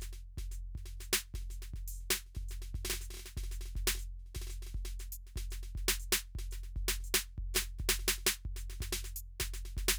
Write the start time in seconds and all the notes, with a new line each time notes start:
0.01 snare, hi-hat pedal
0.13 snare
0.38 kick, snare
0.51 snare, closed hi-hat, hi-hat pedal
0.75 kick, snare
0.86 snare
0.97 snare
1.00 snare, hi-hat pedal
1.13 snare
1.34 kick, snare
1.41 snare
1.50 snare, closed hi-hat, hi-hat pedal
1.62 snare
1.74 kick, snare
1.88 open hi-hat
1.93 hi-hat pedal
2.00 snare
2.10 snare
2.15 snare
2.26 snare
2.35 kick, snare
2.41 snare
2.48 snare, hi-hat pedal
2.53 closed hi-hat
2.62 snare
2.74 kick, snare
2.85 snare
2.90 snare
2.93 snare
3.01 snare, hi-hat pedal
3.10 snare
3.14 snare
3.17 snare
3.19 snare
3.25 snare
3.37 kick, snare
3.43 snare
3.51 snare, hi-hat pedal
3.61 snare
3.65 snare
3.76 kick, snare
3.87 snare
3.95 snare
3.97 snare, hi-hat pedal
4.19 snare
4.26 snare
4.35 kick, snare
4.41 snare
4.47 snare
4.49 snare, closed hi-hat, hi-hat pedal
4.62 snare
4.66 snare
4.74 kick
4.85 snare
4.99 snare, hi-hat pedal
5.12 closed hi-hat
5.27 snare
5.36 kick, snare
5.50 snare, hi-hat pedal
5.63 snare
5.75 kick, snare
5.88 snare
5.99 snare, hi-hat pedal
6.01 snare
6.12 snare
6.35 kick, snare
6.51 snare, hi-hat pedal
6.63 snare
6.76 kick, snare
6.88 snare
7.00 snare, hi-hat pedal
7.14 snare
7.38 kick
7.54 snare, hi-hat pedal
7.56 snare
7.62 snare
7.78 kick, snare
7.89 snare
7.99 snare
8.08 snare, hi-hat pedal
8.18 snare
8.26 snare
8.45 kick
8.56 snare, hi-hat pedal
8.70 snare
8.73 snare
8.81 kick, snare
8.92 snare
9.02 snare
9.04 snare, hi-hat pedal
9.16 closed hi-hat
9.40 kick, snare
9.53 snare, hi-hat pedal
9.65 snare
9.77 kick, snare
9.88 snare